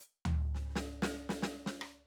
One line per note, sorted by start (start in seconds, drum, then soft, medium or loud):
0.00 hi-hat pedal medium
0.25 floor tom loud
0.55 snare soft
0.61 snare soft
0.65 snare soft
0.69 snare soft
0.76 snare medium
1.02 snare medium
1.29 snare medium
1.42 snare medium
1.66 snare medium
1.81 cross-stick medium